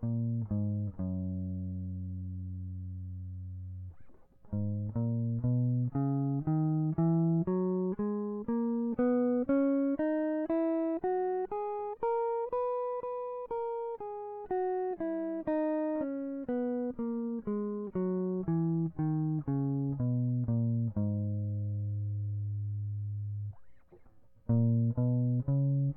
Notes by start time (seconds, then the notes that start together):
0.05 A#2
0.53 G#2
1.02 F#2
4.55 G#2
4.97 A#2
5.46 B2
5.96 C#3
6.48 D#3
6.99 E3
7.48 F#3
8.00 G#3
8.49 A#3
8.99 B3
9.49 C#4
9.99 D#4
10.50 E4
11.04 F#4
11.52 G#4
12.03 A#4
12.53 B4
13.04 B4
13.51 A#4
14.03 G#4
14.51 F#4
15.00 E4
15.48 D#4
16.07 C#4
16.49 B3
16.99 A#3
17.48 G#3
17.96 F#3
18.49 E3
19.00 D#3
19.49 C#3
20.01 B2
20.50 A#2
20.98 G#2
24.51 A#2
24.99 B2
25.50 C#3